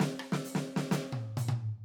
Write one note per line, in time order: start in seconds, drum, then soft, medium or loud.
0.00 snare loud
0.00 hi-hat pedal soft
0.20 cross-stick medium
0.32 snare medium
0.45 hi-hat pedal medium
0.55 snare medium
0.76 snare medium
0.91 snare loud
0.91 hi-hat pedal medium
1.13 high tom loud
1.37 hi-hat pedal medium
1.37 high tom loud
1.49 high tom loud